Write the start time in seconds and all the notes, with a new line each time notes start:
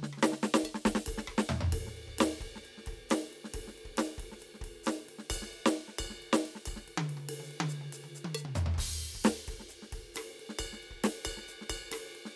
0.03 snare
0.13 cross-stick
0.17 snare
0.22 snare, hi-hat pedal
0.32 snare
0.43 snare, hi-hat pedal
0.54 snare
0.63 kick, hi-hat pedal, percussion
0.75 snare
0.81 snare, hi-hat pedal
0.86 kick
0.91 kick, snare
1.06 kick, hi-hat pedal, ride
1.15 kick
1.17 kick, snare
1.27 kick, cross-stick
1.38 snare
1.49 hi-hat pedal, floor tom
1.61 floor tom
1.72 kick, ride
1.85 kick, snare
1.97 ride
2.08 kick
2.19 snare, hi-hat pedal, ride
2.41 kick, ride
2.47 kick
2.51 kick
2.56 snare
2.63 hi-hat pedal, ride
2.77 snare
2.86 kick, ride
2.94 kick
3.09 snare, hi-hat pedal, ride
3.33 ride
3.44 snare
3.54 kick, hi-hat pedal, ride
3.61 kick
3.68 snare
3.78 ride
3.85 kick
3.97 snare, hi-hat pedal, ride
4.18 kick, ride
4.24 kick
4.32 snare
4.39 hi-hat pedal, ride
4.54 snare
4.61 kick, ride
4.68 kick
4.83 snare, hi-hat pedal, ride
5.09 ride
5.19 snare
5.30 kick, hi-hat pedal, ride bell
5.38 kick, snare
5.42 kick
5.53 ride
5.66 snare
5.88 snare
5.99 kick, ride bell
6.06 kick, snare
6.22 ride
6.33 snare
6.45 ride
6.55 snare
6.66 kick, ride bell
6.74 kick, snare
6.88 ride
6.98 high tom
7.09 ride
7.17 hi-hat pedal, high tom
7.29 ride
7.40 high tom
7.44 hi-hat pedal
7.51 ride
7.60 high tom
7.69 hi-hat pedal, ride
7.81 high tom
7.93 hi-hat pedal, ride
8.04 high tom
8.15 hi-hat pedal
8.25 high tom
8.35 hi-hat pedal, percussion
8.45 mid tom
8.55 floor tom, hi-hat pedal
8.66 floor tom
8.74 kick, floor tom
8.79 hi-hat pedal, crash
8.93 kick
9.15 kick
9.20 kick
9.24 snare, hi-hat pedal, ride
9.48 kick, ride
9.54 kick
9.60 snare
9.69 hi-hat pedal, ride
9.82 snare
9.92 kick, ride
9.99 kick
10.14 cross-stick, hi-hat pedal, ride
10.40 ride
10.49 snare
10.59 kick, hi-hat pedal, ride bell
10.66 kick
10.73 snare
10.83 ride
10.91 kick
11.04 snare, hi-hat pedal, ride
11.25 kick, ride bell
11.32 kick
11.37 snare
11.48 hi-hat pedal, ride
11.61 snare
11.70 kick, ride bell
11.76 kick
11.92 cross-stick, hi-hat pedal, ride
12.15 ride
12.25 snare